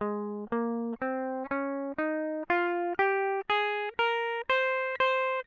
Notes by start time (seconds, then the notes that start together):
0.03 G#3
0.53 A#3
1.03 C4
1.52 C#4
1.99 D#4
2.51 F4
3.00 G4
3.50 G#4
4.00 A#4
4.50 C5
5.01 C5